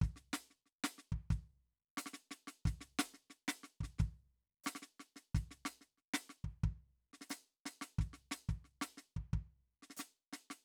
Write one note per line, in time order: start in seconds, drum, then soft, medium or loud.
0.02 kick medium
0.02 snare soft
0.17 snare soft
0.34 snare medium
0.51 snare soft
0.66 snare soft
0.84 snare medium
0.99 snare soft
1.12 kick soft
1.31 kick medium
1.31 snare soft
1.98 snare medium
1.98 hi-hat pedal medium
2.06 snare soft
2.14 snare soft
2.31 snare soft
2.48 snare soft
2.66 kick medium
2.66 snare soft
2.81 snare soft
2.99 snare loud
3.14 snare soft
3.30 snare soft
3.48 snare medium
3.64 snare soft
3.81 kick soft
3.81 snare soft
3.99 kick medium
3.99 snare soft
4.64 snare medium
4.64 hi-hat pedal soft
4.76 snare soft
4.83 snare soft
5.00 snare soft
5.16 snare soft
5.35 kick medium
5.35 snare soft
5.51 snare soft
5.66 snare medium
5.81 snare soft
5.98 snare soft
6.14 snare medium
6.30 snare soft
6.45 kick soft
6.64 kick medium
7.14 snare soft
7.22 snare soft
7.30 snare medium
7.30 hi-hat pedal medium
7.66 snare medium
7.82 snare medium
7.99 kick medium
7.99 snare soft
8.14 snare soft
8.32 snare medium
8.49 kick soft
8.49 snare soft
8.65 snare soft
8.82 snare medium
8.98 snare soft
9.17 kick soft
9.34 kick medium
9.83 snare soft
9.90 snare soft
9.97 snare medium
9.97 hi-hat pedal medium
10.33 snare medium
10.51 snare soft